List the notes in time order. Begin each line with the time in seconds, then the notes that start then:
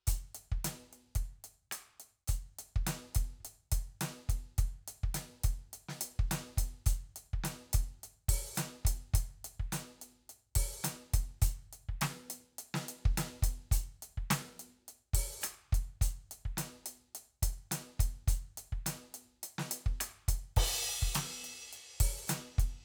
0.05 closed hi-hat, kick
0.35 closed hi-hat
0.52 kick
0.64 snare, closed hi-hat
0.93 closed hi-hat
1.15 kick, closed hi-hat
1.44 closed hi-hat
1.71 cross-stick, closed hi-hat
2.00 closed hi-hat
2.27 closed hi-hat, kick
2.59 closed hi-hat
2.76 kick
2.86 snare, closed hi-hat
3.15 kick, closed hi-hat
3.40 kick
3.45 closed hi-hat
3.72 kick, closed hi-hat
4.01 snare, closed hi-hat
4.29 kick, closed hi-hat
4.58 kick, closed hi-hat
4.88 closed hi-hat
5.03 kick
5.14 snare, closed hi-hat
5.43 kick, closed hi-hat
5.73 closed hi-hat
5.88 snare
6.01 closed hi-hat
6.19 kick
6.31 snare, closed hi-hat
6.57 kick, closed hi-hat
6.86 closed hi-hat, kick
7.16 closed hi-hat
7.33 kick
7.44 snare, closed hi-hat
7.73 kick, closed hi-hat
8.03 closed hi-hat
8.28 kick, open hi-hat
8.55 snare, closed hi-hat, hi-hat pedal
8.85 kick, closed hi-hat
9.14 kick, closed hi-hat
9.44 closed hi-hat
9.59 kick
9.72 closed hi-hat, snare
10.01 closed hi-hat
10.29 closed hi-hat
10.55 kick, open hi-hat
10.83 snare, closed hi-hat, hi-hat pedal
10.90 snare
11.13 kick, closed hi-hat
11.42 closed hi-hat, kick
11.73 closed hi-hat
11.89 kick
12.01 snare, closed hi-hat
12.30 closed hi-hat
12.58 closed hi-hat
12.74 snare
12.88 closed hi-hat
13.05 kick
13.17 snare, closed hi-hat
13.42 kick, closed hi-hat
13.71 closed hi-hat, kick
14.02 closed hi-hat
14.17 kick
14.30 snare, closed hi-hat
14.59 closed hi-hat
14.88 closed hi-hat
15.13 kick, open hi-hat
15.41 cross-stick, closed hi-hat, hi-hat pedal
15.72 kick, closed hi-hat
16.01 closed hi-hat, kick
16.31 closed hi-hat
16.45 kick
16.57 snare, closed hi-hat
16.86 closed hi-hat
17.15 closed hi-hat
17.42 kick, closed hi-hat
17.71 snare, closed hi-hat
17.99 kick, closed hi-hat
18.27 closed hi-hat, kick
18.57 closed hi-hat
18.72 kick
18.86 snare, closed hi-hat
19.14 closed hi-hat
19.43 closed hi-hat
19.58 snare
19.71 closed hi-hat
19.86 kick
20.00 cross-stick, closed hi-hat
20.28 kick, closed hi-hat
20.56 kick, crash
20.84 closed hi-hat
21.02 kick
21.15 snare, closed hi-hat
21.44 closed hi-hat
21.73 closed hi-hat
22.00 kick, open hi-hat
22.27 snare, closed hi-hat, hi-hat pedal
22.58 kick, closed hi-hat